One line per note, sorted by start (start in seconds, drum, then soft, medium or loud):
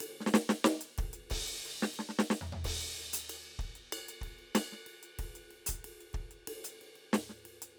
0.01 hi-hat pedal medium
0.01 ride loud
0.21 snare soft
0.27 snare medium
0.35 snare loud
0.50 snare loud
0.65 snare loud
0.82 closed hi-hat medium
0.99 kick medium
0.99 ride medium
1.14 closed hi-hat medium
1.31 kick medium
1.31 ride loud
1.48 closed hi-hat medium
1.66 crash medium
1.83 snare medium
1.93 hi-hat pedal medium
2.00 snare medium
2.10 snare soft
2.19 snare loud
2.31 snare loud
2.42 floor tom medium
2.53 floor tom medium
2.65 kick medium
2.65 ride loud
2.81 closed hi-hat medium
2.97 ride soft
3.14 closed hi-hat loud
3.30 ride bell medium
3.44 closed hi-hat soft
3.60 kick medium
3.60 ride soft
3.76 closed hi-hat soft
3.93 ride bell loud
4.09 closed hi-hat medium
4.22 kick soft
4.22 ride medium
4.39 ride bell soft
4.56 snare loud
4.56 ride bell loud
4.73 snare soft
4.87 ride medium
5.03 closed hi-hat medium
5.19 kick medium
5.19 cross-stick soft
5.19 ride medium
5.36 closed hi-hat medium
5.51 ride soft
5.67 closed hi-hat loud
5.67 kick soft
5.85 ride medium
6.01 closed hi-hat soft
6.14 kick medium
6.14 ride soft
6.32 closed hi-hat soft
6.48 ride loud
6.65 closed hi-hat medium
6.82 ride soft
6.96 ride soft
7.14 snare loud
7.14 ride medium
7.14 floor tom soft
7.30 snare soft
7.46 ride medium
7.62 closed hi-hat medium